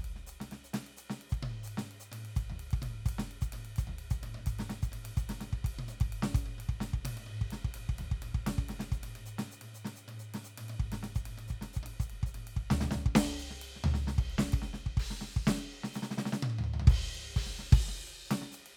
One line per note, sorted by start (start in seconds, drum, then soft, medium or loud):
0.01 hi-hat pedal soft
0.01 ride medium
0.16 snare soft
0.27 hi-hat pedal medium
0.27 ride medium
0.40 snare soft
0.40 ride medium
0.51 snare soft
0.51 ride medium
0.64 hi-hat pedal medium
0.74 snare medium
0.74 ride medium
0.87 ride soft
0.97 hi-hat pedal medium
0.97 ride medium
1.10 snare medium
1.21 ride medium
1.29 kick medium
1.29 hi-hat pedal medium
1.34 ride soft
1.43 high tom medium
1.43 ride soft
1.64 hi-hat pedal medium
1.68 ride medium
1.77 snare medium
1.77 ride medium
1.91 ride soft
2.00 hi-hat pedal medium
2.12 high tom medium
2.12 ride medium
2.25 ride soft
2.36 kick medium
2.36 hi-hat pedal medium
2.36 ride medium
2.50 floor tom medium
2.60 ride medium
2.71 kick medium
2.71 ride medium
2.82 high tom medium
2.82 ride medium
3.06 kick medium
3.06 hi-hat pedal medium
3.06 ride medium
3.19 snare medium
3.19 ride medium
3.31 ride soft
3.41 kick medium
3.41 hi-hat pedal medium
3.53 high tom medium
3.53 ride medium
3.65 ride medium
3.76 kick medium
3.76 hi-hat pedal medium
3.76 ride medium
3.87 floor tom medium
3.99 ride medium
4.10 kick medium
4.10 hi-hat pedal medium
4.10 ride medium
4.23 high tom medium
4.23 ride medium
4.35 high tom medium
4.46 kick medium
4.46 hi-hat pedal medium
4.46 ride medium
4.59 snare medium
4.59 ride medium
4.70 snare medium
4.70 ride medium
4.82 kick medium
4.82 hi-hat pedal medium
4.92 high tom medium
4.92 ride medium
5.05 high tom soft
5.05 ride medium
5.17 kick medium
5.17 hi-hat pedal medium
5.29 snare medium
5.29 ride medium
5.41 snare soft
5.41 ride medium
5.53 kick medium
5.64 kick medium
5.64 ride medium
5.79 high tom medium
5.88 hi-hat pedal medium
5.88 high tom medium
6.00 kick medium
6.00 ride medium
6.12 ride medium
6.23 snare medium
6.35 kick medium
6.35 hi-hat pedal medium
6.35 ride medium
6.46 high tom medium
6.58 high tom soft
6.58 ride medium
6.69 kick medium
6.81 snare medium
6.81 ride medium
6.94 kick medium
7.05 high tom medium
7.05 ride loud
7.17 high tom medium
7.17 ride medium
7.26 high tom medium
7.26 ride soft
7.41 kick medium
7.51 snare medium
7.51 ride medium
7.65 kick medium
7.74 high tom soft
7.74 ride medium
7.89 kick medium
7.99 floor tom medium
7.99 ride medium
8.12 kick medium
8.22 high tom medium
8.22 ride medium
8.35 kick medium
8.46 snare medium
8.46 ride medium
8.58 kick medium
8.69 snare soft
8.69 ride medium
8.81 ride medium
8.92 kick medium
8.92 hi-hat pedal medium
9.03 high tom medium
9.03 ride medium
9.15 high tom soft
9.15 ride medium
9.26 hi-hat pedal medium
9.39 snare medium
9.39 ride medium
9.51 hi-hat pedal medium
9.61 high tom medium
9.61 ride medium
9.75 hi-hat pedal medium
9.85 snare medium
9.85 ride medium
9.96 hi-hat pedal medium
10.08 high tom medium
10.08 ride medium
10.19 hi-hat pedal medium
10.34 snare medium
10.34 ride medium
10.44 hi-hat pedal medium
10.58 high tom medium
10.58 ride medium
10.69 high tom medium
10.69 ride medium
10.80 kick medium
10.92 snare medium
10.92 ride medium
11.03 snare medium
11.03 ride medium
11.15 kick medium
11.15 hi-hat pedal medium
11.26 high tom medium
11.26 ride medium
11.38 high tom medium
11.38 ride medium
11.48 kick soft
11.48 hi-hat pedal medium
11.61 snare soft
11.61 ride medium
11.73 kick medium
11.73 hi-hat pedal medium
11.83 high tom soft
11.83 ride medium
12.00 kick medium
12.00 hi-hat pedal medium
12.10 snare soft
12.10 ride medium
12.23 kick medium
12.23 hi-hat pedal medium
12.35 high tom medium
12.35 ride medium
12.47 ride medium
12.57 kick medium
12.70 snare loud
12.70 floor tom loud
12.84 floor tom medium
12.91 snare medium
12.91 floor tom medium
13.06 kick medium
13.15 snare loud
13.15 ride medium
13.39 hi-hat pedal medium
13.39 ride soft
13.50 snare soft
13.62 ride medium
13.76 snare soft
13.84 floor tom loud
13.94 snare medium
14.07 snare medium
14.18 kick medium
14.18 ride medium
14.30 ride soft
14.38 snare loud
14.53 kick medium
14.53 ride medium
14.62 snare soft
14.73 snare soft
14.86 kick medium
14.97 kick medium
14.97 crash medium
15.10 snare soft
15.21 snare soft
15.36 kick medium
15.47 snare loud
15.47 ride medium
15.73 ride soft
15.84 snare medium
15.94 snare medium
15.94 hi-hat pedal medium
16.02 snare medium
16.11 snare medium
16.18 snare medium
16.26 snare medium
16.33 snare medium
16.43 high tom loud
16.50 high tom medium
16.59 floor tom medium
16.64 floor tom medium
16.74 floor tom medium
16.80 floor tom medium
16.87 kick loud
16.87 ride loud
17.15 ride bell soft
17.36 kick medium
17.36 crash medium
17.46 snare soft
17.59 snare soft
17.73 kick loud
17.73 crash medium
17.88 snare soft
18.01 snare soft
18.06 hi-hat pedal soft
18.06 ride soft
18.26 hi-hat pedal soft
18.31 snare loud
18.31 ride medium
18.42 snare soft
18.52 snare soft
18.52 hi-hat pedal medium
18.52 ride medium
18.65 snare soft
18.65 ride medium